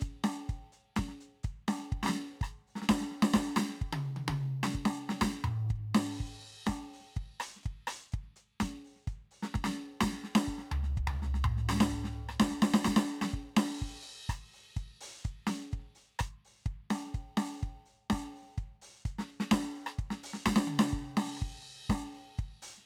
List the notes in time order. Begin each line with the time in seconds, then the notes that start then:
0.01 closed hi-hat, kick
0.24 open hi-hat, snare
0.49 closed hi-hat, kick
0.72 open hi-hat
0.96 open hi-hat, kick, snare
1.08 snare
1.21 open hi-hat
1.28 snare
1.35 snare
1.44 closed hi-hat, kick
1.68 open hi-hat, snare
1.79 snare
1.92 kick
2.03 snare
2.06 snare
2.09 snare
2.41 closed hi-hat, kick, cross-stick, hi-hat pedal
2.67 open hi-hat
2.76 snare
2.82 snare
2.89 kick, snare
3.01 snare
3.11 snare
3.23 snare
3.34 kick, snare, hi-hat pedal
3.48 snare
3.56 snare
3.68 snare
3.82 kick
3.93 high tom
4.16 high tom
4.28 kick, high tom
4.37 high tom
4.63 snare
4.72 kick, snare, hi-hat pedal
4.86 snare
5.09 snare
5.21 kick, snare, hi-hat pedal
5.44 mid tom
5.69 kick, hi-hat pedal
5.76 kick
5.95 snare, crash
6.11 snare
6.17 open hi-hat, kick, snare
6.26 snare
6.29 snare
6.31 snare
6.42 open hi-hat
6.66 open hi-hat, kick, snare
6.93 open hi-hat
7.00 snare
7.06 snare
7.16 kick, closed hi-hat
7.40 open hi-hat, cross-stick
7.56 snare
7.63 kick, open hi-hat
7.87 open hi-hat, cross-stick
8.12 kick, open hi-hat
8.23 snare
8.36 open hi-hat
8.60 open hi-hat, kick, snare
8.85 open hi-hat
8.96 snare
9.08 closed hi-hat, kick
9.31 open hi-hat
9.43 snare
9.54 kick, snare
9.77 cross-stick
10.01 kick, snare, hi-hat pedal
10.13 snare
10.24 snare
10.35 snare
10.47 kick, snare, hi-hat pedal
10.58 snare
10.72 floor tom
10.83 snare
10.96 kick, hi-hat pedal
11.07 floor tom
11.14 floor tom
11.22 snare
11.35 snare
11.44 kick, hi-hat pedal, mid tom
11.57 snare
11.69 snare
11.75 snare
11.81 snare
11.92 kick
11.96 snare
12.04 snare
12.29 cross-stick
12.40 kick, snare, hi-hat pedal
12.50 snare
12.62 snare
12.74 snare
12.85 kick, snare, hi-hat pedal
12.97 snare
13.22 snare
13.34 kick
13.57 snare, crash
13.76 open hi-hat, cross-stick
13.82 kick
14.03 open hi-hat
14.29 closed hi-hat, kick, cross-stick
14.53 open hi-hat
14.77 closed hi-hat, kick
15.01 open hi-hat
15.25 closed hi-hat, kick
15.47 open hi-hat, snare
15.61 snare
15.72 closed hi-hat, kick
15.80 snare
15.84 snare
15.89 snare
15.95 open hi-hat
16.19 open hi-hat, kick, cross-stick
16.45 open hi-hat
16.66 closed hi-hat, kick
16.90 open hi-hat, snare
17.07 snare
17.14 closed hi-hat, kick
17.37 open hi-hat, snare
17.61 open hi-hat, kick, snare
17.69 snare
17.86 open hi-hat
18.10 open hi-hat, kick, snare
18.22 snare
18.36 open hi-hat
18.43 snare
18.48 snare
18.52 snare
18.58 closed hi-hat, kick
18.82 open hi-hat
19.05 closed hi-hat, kick
19.19 snare
19.30 open hi-hat
19.40 snare
19.51 kick, snare
19.63 snare
19.76 open hi-hat
19.87 cross-stick
19.97 kick, closed hi-hat, hi-hat pedal
20.11 snare
20.24 open hi-hat
20.34 snare
20.46 kick, snare
20.56 snare
20.67 high tom
20.79 snare
20.93 kick
21.17 snare, crash
21.27 snare
21.37 open hi-hat, cross-stick
21.42 kick
21.62 open hi-hat
21.90 closed hi-hat, kick, snare
22.15 open hi-hat
22.38 open hi-hat, kick
22.62 open hi-hat
22.78 snare